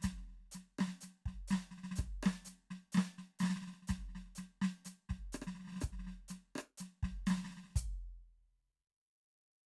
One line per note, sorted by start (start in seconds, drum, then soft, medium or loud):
0.01 snare soft
0.01 hi-hat pedal medium
0.04 kick soft
0.04 snare medium
0.18 snare soft
0.24 snare soft
0.28 snare soft
0.33 snare soft
0.37 snare soft
0.40 snare soft
0.46 snare soft
0.52 snare soft
0.52 hi-hat pedal medium
0.79 cross-stick medium
0.79 snare medium
0.88 snare soft
1.01 snare soft
1.01 hi-hat pedal medium
1.11 snare soft
1.17 snare soft
1.26 kick soft
1.26 snare soft
1.48 snare medium
1.48 hi-hat pedal medium
1.53 snare medium
1.71 snare soft
1.78 snare soft
1.84 snare soft
1.92 snare soft
1.96 kick soft
1.96 cross-stick medium
1.96 snare soft
1.96 hi-hat pedal medium
2.05 kick soft
2.23 cross-stick medium
2.23 snare loud
2.43 snare soft
2.43 hi-hat pedal medium
2.47 snare soft
2.71 snare soft
2.93 snare medium
2.93 hi-hat pedal medium
2.98 snare loud
3.19 snare soft
3.39 snare medium
3.39 hi-hat pedal medium
3.43 snare medium
3.45 snare medium
3.50 snare medium
3.56 snare medium
3.62 snare soft
3.68 snare soft
3.74 snare soft
3.83 snare soft
3.88 kick soft
3.88 snare medium
3.88 hi-hat pedal medium
4.01 snare soft
4.09 snare soft
4.15 snare soft
4.26 snare soft
4.30 snare soft
4.36 snare soft
4.36 hi-hat pedal medium
4.62 snare medium
4.64 snare medium
4.85 snare soft
4.85 hi-hat pedal medium
4.97 snare soft
5.10 kick soft
5.10 snare soft
5.33 cross-stick medium
5.33 hi-hat pedal medium
5.42 cross-stick medium
5.47 snare soft
5.55 snare soft
5.60 snare soft
5.65 snare soft
5.68 snare soft
5.72 snare soft
5.76 snare soft
5.80 cross-stick medium
5.80 snare soft
5.80 hi-hat pedal medium
5.84 kick soft
5.93 snare soft
5.99 snare soft
6.04 snare soft
6.07 snare soft
6.29 snare soft
6.29 hi-hat pedal medium
6.56 cross-stick medium
6.59 cross-stick medium
6.78 snare soft
6.78 hi-hat pedal medium
6.93 snare soft
6.97 snare soft
7.03 kick soft
7.03 snare soft
7.27 snare medium
7.27 hi-hat pedal medium
7.31 snare medium
7.38 snare soft
7.44 snare soft
7.44 snare medium
7.49 snare soft
7.51 snare soft
7.57 snare soft
7.64 snare soft
7.66 snare soft
7.70 snare soft
7.75 kick medium
7.75 snare soft
7.75 hi-hat pedal loud
7.80 kick soft
7.80 snare soft
7.86 kick soft